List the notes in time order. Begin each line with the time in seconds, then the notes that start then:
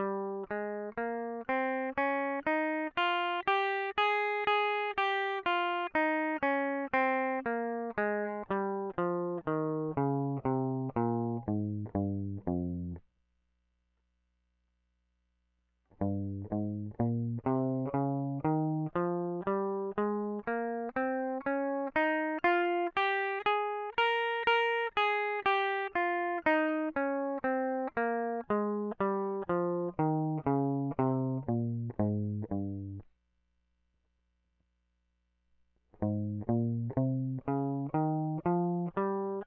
0.00 G3
0.52 G#3
0.99 A#3
1.50 C4
1.99 C#4
2.48 D#4
2.98 F4
3.48 G4
3.99 G#4
4.48 G#4
4.99 G4
5.47 F4
5.96 D#4
6.44 C#4
6.95 C4
7.47 A#3
7.99 G#3
8.52 G3
9.00 F3
9.49 D#3
10.00 C#3
10.47 C3
10.98 A#2
11.50 G#2
11.97 G2
12.50 F2
16.04 G2
16.54 G#2
17.02 A#2
17.48 C3
17.96 C#3
18.46 D#3
18.97 F3
19.48 G3
19.99 G#3
20.49 A#3
20.97 C4
21.47 C#4
21.97 D#4
22.45 F4
22.98 G4
23.47 G#4
23.99 A#4
24.48 A#4
24.98 G#4
25.47 G4
25.96 F4
26.47 D#4
26.97 C#4
27.45 C4
27.98 A#3
28.52 G#3
29.02 G3
29.51 F3
30.01 D#3
30.48 C#3
31.01 C3
31.51 A#2
32.02 G#2
32.54 G2
36.04 G#2
36.51 A#2
36.99 C3
37.50 C#3
37.96 D#3
38.47 F3
38.98 G3